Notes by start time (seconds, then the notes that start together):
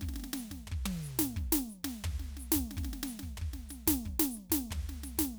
0.01 kick, snare
0.09 snare
0.14 snare
0.16 snare
0.20 snare
0.33 snare, hi-hat pedal
0.50 kick, snare
0.67 floor tom
0.71 kick
0.86 high tom
1.03 hi-hat pedal
1.18 kick, snare
1.36 kick, snare
1.52 snare
1.59 snare
1.69 snare, hi-hat pedal
1.83 kick, snare
2.04 kick, floor tom
2.19 snare
2.37 snare, hi-hat pedal
2.52 kick, snare
2.71 snare
2.77 kick, snare
2.83 snare
2.93 snare
3.03 snare, hi-hat pedal
3.19 kick, snare
3.37 floor tom
3.41 kick
3.53 snare
3.69 snare, hi-hat pedal
3.87 kick, snare
4.05 kick, snare
4.19 snare
4.31 hi-hat pedal
4.37 snare
4.50 kick, snare
4.60 snare
4.71 kick, floor tom
4.89 snare
5.03 snare, hi-hat pedal
5.18 kick, snare